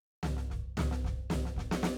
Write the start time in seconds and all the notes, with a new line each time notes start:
0.23 snare, floor tom
0.37 snare
0.50 kick, snare
0.77 snare, floor tom
0.91 snare
1.04 kick, snare
1.30 snare, floor tom
1.45 snare
1.56 kick, snare
1.71 snare
1.83 snare